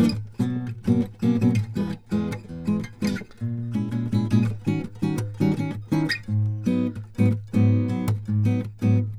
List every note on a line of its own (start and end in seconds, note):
0.00 0.10 F#2
0.00 0.10 E3
0.00 0.17 A#3
0.00 0.18 D4
0.41 0.73 B2
0.41 0.71 F#3
0.85 1.08 F#2
0.85 1.03 B2
0.85 1.12 F#3
0.85 1.09 A#3
1.24 1.38 B2
1.24 1.42 F#3
1.24 1.41 A#3
1.24 1.38 C#4
1.43 1.56 B2
1.43 1.58 F#3
1.43 1.66 A#3
1.43 1.60 C#4
1.77 1.98 E2
1.77 2.00 E3
1.77 2.04 B3
2.12 2.43 E2
2.12 2.34 E3
2.12 2.38 G#3
2.12 2.35 B3
2.50 2.84 E2
2.69 2.85 E3
2.69 2.92 G#3
2.69 2.86 B3
3.03 3.20 F2
3.03 3.19 D3
3.03 3.10 G#3
3.03 3.19 B3
3.42 3.91 A#2
3.76 3.92 G#3
3.76 3.92 C#4
3.76 3.92 E4
3.93 4.10 A#2
3.93 4.09 G#3
3.93 4.10 C#4
3.93 4.11 E4
4.14 4.28 A#2
4.14 4.28 G#3
4.14 4.29 C#4
4.14 4.32 E4
4.32 4.49 A#2
4.32 4.48 G#3
4.32 4.49 C#4
4.32 4.44 E4
4.68 4.85 D#3
4.68 4.91 C#4
4.68 4.91 F#4
5.03 5.24 D#3
5.03 5.23 C#4
5.03 5.25 F#4
5.42 5.59 D#3
5.42 5.57 C#4
5.42 5.54 F#4
5.54 5.79 F#4
5.60 5.74 D#3
5.60 5.79 C#4
5.93 6.12 D#3
5.93 6.16 C#4
5.93 6.09 E4
6.29 6.91 G#2
6.68 6.97 F#3
6.68 6.94 B3
6.68 6.97 D#4
7.20 7.30 G#2
7.20 7.32 F#3
7.20 7.37 B3
7.20 7.37 D#4
7.55 8.07 G#2
7.55 7.91 F#3
7.55 7.90 B3
7.55 8.15 D#4
7.90 8.14 F#3
7.90 8.13 B3
8.30 8.65 G#2
8.47 8.63 F#3
8.47 8.65 B3
8.47 8.69 D#4
8.83 9.00 G#2
8.83 9.07 F#3
8.83 9.08 B3
8.83 9.11 D#4